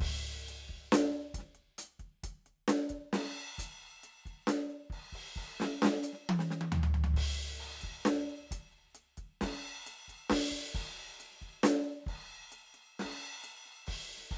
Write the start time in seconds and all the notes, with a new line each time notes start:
0.01 kick, ride
0.09 kick
0.49 closed hi-hat
0.70 kick, closed hi-hat
0.93 closed hi-hat, snare
1.13 closed hi-hat
1.35 kick, closed hi-hat
1.39 snare
1.55 closed hi-hat
1.79 closed hi-hat
2.00 kick, closed hi-hat
2.24 kick, closed hi-hat
2.46 closed hi-hat
2.68 snare, closed hi-hat
2.90 kick, closed hi-hat
3.13 snare, crash
3.59 closed hi-hat, kick
3.81 closed hi-hat
4.04 closed hi-hat
4.26 kick, closed hi-hat
4.48 snare, closed hi-hat
4.71 closed hi-hat
4.90 kick, crash
5.13 kick, ride
5.36 kick, crash
5.60 snare
5.62 snare
5.82 snare
5.85 snare
6.03 hi-hat pedal
6.13 snare
6.29 high tom
6.40 snare
6.51 snare
6.61 closed hi-hat, high tom
6.72 floor tom
6.84 floor tom
6.95 floor tom
7.04 floor tom
7.14 kick, ride
7.60 crash
7.82 kick, closed hi-hat
8.06 snare, closed hi-hat
8.30 closed hi-hat
8.51 kick, closed hi-hat
8.73 closed hi-hat
8.95 closed hi-hat
9.18 kick, closed hi-hat
9.41 kick, snare, crash
9.63 closed hi-hat
9.87 closed hi-hat
10.08 kick, closed hi-hat
10.30 kick, snare, hi-hat pedal, ride
10.52 kick
10.69 hi-hat pedal
10.75 kick, snare, crash
11.20 closed hi-hat
11.32 snare
11.42 kick, closed hi-hat
11.64 closed hi-hat, snare
11.85 closed hi-hat
12.03 kick, snare
12.09 crash
12.30 closed hi-hat
12.52 closed hi-hat
12.75 closed hi-hat
13.00 snare, crash
13.05 kick
13.22 closed hi-hat
13.44 closed hi-hat
13.66 closed hi-hat
13.87 kick, ride
14.18 snare
14.22 snare
14.28 kick, snare, crash